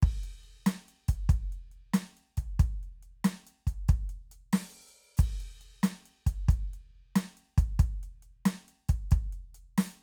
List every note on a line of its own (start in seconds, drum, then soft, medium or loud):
0.01 kick loud
0.01 crash medium
0.23 closed hi-hat soft
0.43 closed hi-hat soft
0.66 snare loud
0.66 closed hi-hat loud
0.88 closed hi-hat soft
1.08 kick loud
1.08 closed hi-hat medium
1.29 kick loud
1.29 closed hi-hat medium
1.52 closed hi-hat soft
1.71 closed hi-hat soft
1.94 snare loud
1.94 closed hi-hat loud
2.17 closed hi-hat soft
2.37 kick medium
2.37 closed hi-hat medium
2.59 kick loud
2.59 closed hi-hat medium
2.83 closed hi-hat soft
3.03 closed hi-hat soft
3.24 snare loud
3.24 closed hi-hat loud
3.47 closed hi-hat medium
3.67 kick medium
3.67 closed hi-hat medium
3.88 kick loud
3.88 closed hi-hat medium
4.09 closed hi-hat soft
4.31 closed hi-hat medium
4.53 snare loud
4.53 open hi-hat loud
5.17 kick loud
5.17 hi-hat pedal loud
5.17 crash medium
5.40 closed hi-hat soft
5.61 closed hi-hat soft
5.83 snare loud
5.83 closed hi-hat loud
6.06 closed hi-hat soft
6.26 kick medium
6.26 closed hi-hat medium
6.49 kick loud
6.49 closed hi-hat medium
6.73 closed hi-hat soft
7.16 snare loud
7.16 closed hi-hat loud
7.37 closed hi-hat soft
7.58 kick loud
7.58 closed hi-hat medium
7.79 kick loud
7.79 closed hi-hat medium
8.03 closed hi-hat soft
8.22 closed hi-hat soft
8.45 snare loud
8.45 closed hi-hat loud
8.68 closed hi-hat soft
8.89 kick loud
8.89 closed hi-hat medium
9.11 kick loud
9.11 closed hi-hat medium
9.32 closed hi-hat soft
9.54 closed hi-hat medium
9.78 snare loud
9.78 open hi-hat loud